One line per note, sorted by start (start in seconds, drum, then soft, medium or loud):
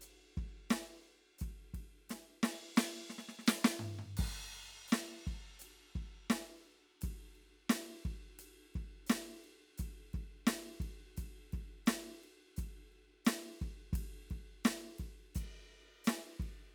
0.01 hi-hat pedal medium
0.01 ride soft
0.37 kick soft
0.37 ride soft
0.70 snare loud
0.70 hi-hat pedal medium
0.70 ride soft
1.39 kick soft
1.39 hi-hat pedal medium
1.39 ride soft
1.74 kick soft
1.74 ride soft
2.09 snare medium
2.09 hi-hat pedal medium
2.09 ride soft
2.43 snare loud
2.43 ride medium
2.76 snare loud
2.76 hi-hat pedal medium
2.76 ride medium
3.10 snare soft
3.18 snare soft
3.29 snare soft
3.39 snare soft
3.47 snare loud
3.47 hi-hat pedal medium
3.65 snare loud
3.79 floor tom medium
3.99 floor tom medium
4.17 kick medium
4.17 hi-hat pedal medium
4.17 crash medium
4.88 hi-hat pedal medium
4.92 snare loud
4.92 ride soft
5.27 kick soft
5.27 ride soft
5.59 hi-hat pedal medium
5.59 ride soft
5.94 kick soft
5.94 ride soft
6.30 snare loud
6.30 hi-hat pedal medium
6.30 ride soft
7.01 kick soft
7.01 hi-hat pedal medium
7.01 ride medium
7.35 ride soft
7.70 snare loud
7.70 hi-hat pedal medium
7.70 ride medium
8.05 kick soft
8.05 ride soft
8.39 hi-hat pedal medium
8.39 ride medium
8.75 kick soft
8.75 ride soft
9.07 snare loud
9.07 hi-hat pedal medium
9.07 ride medium
9.44 ride soft
9.78 kick soft
9.78 hi-hat pedal medium
9.78 ride soft
10.14 kick soft
10.14 ride soft
10.47 snare loud
10.47 hi-hat pedal medium
10.47 ride medium
10.80 kick soft
10.80 ride soft
11.17 kick soft
11.17 hi-hat pedal soft
11.17 ride soft
11.53 kick soft
11.53 ride soft
11.86 snare loud
11.86 hi-hat pedal medium
11.86 ride medium
12.24 ride soft
12.57 kick soft
12.57 hi-hat pedal medium
12.57 ride soft
12.92 ride soft
13.25 snare loud
13.25 hi-hat pedal medium
13.25 ride medium
13.62 kick soft
13.62 ride soft
13.93 kick medium
13.93 hi-hat pedal soft
13.93 ride medium
14.30 kick soft
14.30 ride soft
14.65 snare loud
14.65 hi-hat pedal medium
14.65 ride medium
14.99 kick soft
14.99 ride soft
15.35 kick soft
15.35 hi-hat pedal medium
15.35 crash soft
16.04 snare loud
16.04 hi-hat pedal medium
16.04 ride medium
16.40 kick soft
16.40 ride soft